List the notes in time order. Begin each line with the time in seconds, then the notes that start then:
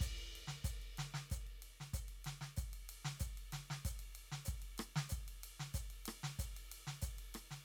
0.01 kick, hi-hat pedal, ride
0.19 ride
0.36 ride
0.48 snare
0.65 kick, hi-hat pedal, ride
0.82 ride
0.98 snare, ride
1.14 snare
1.31 kick, hi-hat pedal, ride
1.47 ride
1.63 ride
1.81 snare
1.94 kick, hi-hat pedal, ride
2.09 ride
2.25 snare, ride
2.41 snare
2.57 kick, hi-hat pedal, ride
2.74 ride
2.90 ride
3.05 snare
3.20 kick, hi-hat pedal, ride
3.38 ride
3.53 snare, ride
3.71 snare
3.85 kick, hi-hat pedal, ride
4.00 ride
4.16 ride
4.32 snare
4.46 kick, hi-hat pedal, ride
4.62 ride
4.78 cross-stick, ride
4.96 snare
5.10 kick, hi-hat pedal, ride
5.28 ride
5.44 ride
5.60 snare
5.75 kick, hi-hat pedal, ride
5.91 ride
6.06 cross-stick, ride
6.24 snare
6.39 kick, hi-hat pedal, ride
6.57 ride
6.72 ride
6.87 snare
7.02 kick, hi-hat pedal, ride
7.19 ride
7.35 cross-stick, ride
7.51 snare